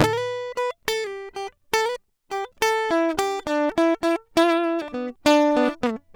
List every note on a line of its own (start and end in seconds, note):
0.00 0.14 A2
0.00 0.54 B4
0.58 0.75 B4
0.89 1.05 A4
1.05 1.32 G4
1.37 1.52 G4
1.74 1.90 A4
2.32 2.50 G4
2.63 2.96 A4
2.92 3.10 E4
3.10 3.18 D#4
3.19 3.47 G4
3.48 3.74 D4
3.79 3.99 E4
4.04 4.21 E4
4.38 4.80 E4
4.80 4.89 D4
4.95 5.17 B3
5.27 5.79 D4
5.58 5.74 B3
5.84 6.01 A3